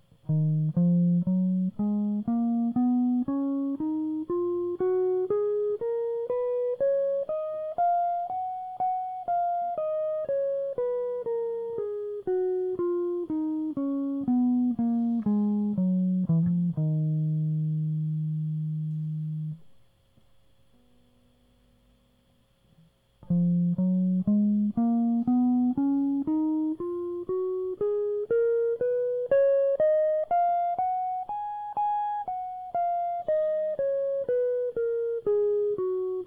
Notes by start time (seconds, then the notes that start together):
0.31 D#3
0.78 F3
1.28 F#3
1.80 G#3
2.29 A#3
2.77 B3
3.29 C#4
3.81 D#4
4.30 F4
4.81 F#4
5.31 G#4
5.82 A#4
6.30 B4
6.81 C#5
7.29 D#5
7.79 F5
8.30 F#5
8.81 F#5
9.28 F5
9.78 D#5
10.29 C#5
10.79 B4
11.27 A#4
11.79 G#4
12.28 F#4
12.79 F4
13.30 D#4
13.78 C#4
14.29 B3
14.80 A#3
15.27 G#3
15.79 F#3
16.31 E3
16.79 D#3
23.32 F3
23.80 F#3
24.28 G#3
24.78 A#3
25.28 B3
25.78 C#4
26.28 D#4
26.81 F4
27.30 F#4
27.82 G#4
28.31 A#4
28.82 B4
29.32 C#5
29.80 D#5
30.31 F5
30.79 F#5
31.30 G#5
31.77 G#5
32.28 F#5
32.75 F5
33.29 D#5
33.79 C#5
34.29 B4
34.77 A#4
35.27 G#4
35.79 F#4